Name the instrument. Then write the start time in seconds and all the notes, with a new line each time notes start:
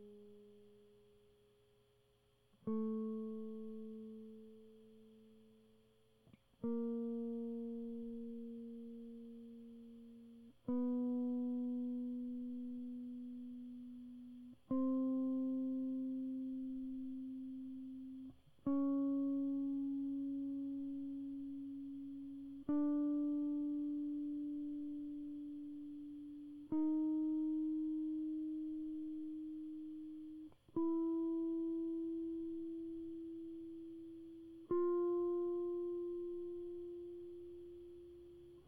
electric guitar
2.68 A3
6.64 A#3
10.69 B3
14.71 C4
18.67 C#4
22.69 D4
26.72 D#4
30.77 E4
34.71 F4